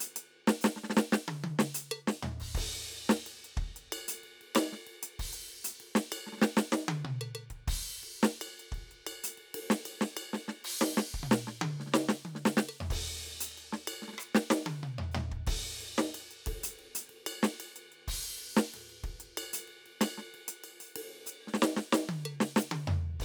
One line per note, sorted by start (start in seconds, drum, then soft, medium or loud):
0.01 closed hi-hat loud
0.17 closed hi-hat loud
0.48 snare loud
0.62 snare loud
0.62 hi-hat pedal loud
0.77 snare soft
0.84 snare medium
0.90 snare medium
0.97 snare loud
1.13 snare loud
1.28 high tom loud
1.44 high tom loud
1.59 snare loud
1.75 closed hi-hat loud
1.92 percussion loud
2.08 snare loud
2.23 floor tom loud
2.40 kick soft
2.40 crash medium
2.55 kick medium
2.55 ride loud
2.61 hi-hat pedal soft
2.76 closed hi-hat soft
2.93 ride soft
3.10 snare loud
3.27 ride bell medium
3.45 closed hi-hat medium
3.57 kick medium
3.57 ride soft
3.77 closed hi-hat medium
3.93 ride bell loud
4.09 closed hi-hat loud
4.24 ride soft
4.42 ride soft
4.56 snare loud
4.56 ride bell loud
4.73 snare soft
4.87 ride medium
5.03 closed hi-hat loud
5.20 kick medium
5.20 crash medium
5.33 closed hi-hat medium
5.49 ride bell soft
5.65 closed hi-hat loud
5.81 ride medium
5.96 snare loud
6.12 ride bell loud
6.27 snare soft
6.33 snare soft
6.38 snare soft
6.42 snare loud
6.57 snare loud
6.73 snare loud
6.89 high tom loud
7.05 mid tom loud
7.22 percussion medium
7.35 percussion medium
7.51 kick soft
7.51 closed hi-hat soft
7.68 kick medium
7.68 crash loud
7.87 closed hi-hat soft
8.04 ride medium
8.23 snare loud
8.42 ride bell loud
8.60 closed hi-hat medium
8.72 kick medium
8.72 ride soft
8.92 closed hi-hat soft
9.07 ride bell loud
9.24 closed hi-hat loud
9.38 ride soft
9.55 ride loud
9.71 snare loud
9.86 ride bell medium
10.01 snare loud
10.17 ride bell loud
10.34 snare medium
10.49 snare medium
10.65 crash loud
10.82 snare loud
10.98 snare loud
11.14 kick medium
11.24 mid tom medium
11.32 snare loud
11.48 snare medium
11.62 high tom loud
11.80 snare soft
11.87 snare soft
11.92 snare soft
11.94 snare loud
12.09 snare loud
12.26 high tom medium
12.36 snare soft
12.46 snare loud
12.58 snare loud
12.69 percussion medium
12.81 floor tom medium
12.91 kick medium
12.91 ride loud
13.12 closed hi-hat soft
13.26 ride soft
13.41 closed hi-hat loud
13.58 ride bell soft
13.73 snare medium
13.88 ride bell loud
14.03 snare soft
14.08 snare soft
14.13 snare soft
14.19 cross-stick medium
14.19 hi-hat pedal loud
14.35 snare loud
14.51 snare loud
14.67 high tom loud
14.84 mid tom medium
14.99 floor tom loud
15.12 hi-hat pedal soft
15.12 floor tom loud
15.32 kick soft
15.32 hi-hat pedal soft
15.47 kick medium
15.47 ride loud
15.64 closed hi-hat soft
15.71 closed hi-hat soft
15.81 ride medium
15.99 snare loud
16.15 ride bell medium
16.31 closed hi-hat medium
16.47 kick medium
16.47 ride loud
16.64 closed hi-hat loud
16.80 ride soft
16.96 closed hi-hat loud
17.10 ride medium
17.27 ride bell loud
17.43 snare loud
17.60 ride bell medium
17.76 closed hi-hat medium
17.92 closed hi-hat soft
18.08 kick medium
18.08 crash loud
18.24 closed hi-hat medium
18.39 ride soft
18.57 snare loud
18.74 cross-stick soft
18.74 ride medium
18.74 floor tom soft
18.90 closed hi-hat soft
19.04 kick medium
19.04 ride soft
19.21 closed hi-hat medium
19.38 ride bell loud
19.54 closed hi-hat loud
19.68 ride soft
19.86 ride soft
20.01 snare loud
20.01 ride bell loud
20.18 snare soft
20.35 ride soft
20.49 closed hi-hat loud
20.64 ride bell medium
20.81 open hi-hat medium
20.96 ride loud
21.27 hi-hat pedal loud
21.48 snare soft
21.54 snare medium
21.63 snare loud
21.77 snare medium
21.93 snare loud
21.93 hi-hat pedal medium
22.09 high tom loud
22.26 percussion loud
22.41 snare loud
22.57 snare loud
22.57 hi-hat pedal loud
22.72 high tom loud
22.88 floor tom loud
23.20 kick medium
23.20 ride loud